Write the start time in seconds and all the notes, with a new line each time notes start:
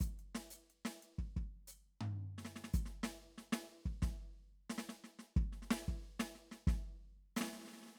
0.01 kick, hi-hat pedal
0.20 closed hi-hat
0.35 snare
0.51 hi-hat pedal
0.71 closed hi-hat
0.86 snare
1.03 closed hi-hat
1.19 kick
1.37 kick
1.68 hi-hat pedal
2.01 floor tom
2.39 snare
2.45 snare
2.56 snare
2.64 snare
2.74 kick, hi-hat pedal
2.86 snare
3.04 snare
3.38 snare
3.53 snare
3.69 snare
3.86 kick
4.03 kick, snare
4.70 snare
4.79 snare
4.89 snare
5.04 snare
5.19 snare
5.37 kick
5.53 snare
5.63 snare
5.71 snare
5.89 kick
6.04 snare
6.20 snare
6.36 snare
6.52 snare
6.68 kick, snare
7.37 snare, hi-hat pedal
7.41 snare
7.45 snare
7.48 snare
7.53 snare
7.56 snare
7.59 snare
7.62 snare
7.65 snare
7.68 snare
7.71 snare
7.74 snare
7.78 snare
7.81 snare
7.83 snare
7.87 snare
7.89 snare
7.93 snare
7.96 snare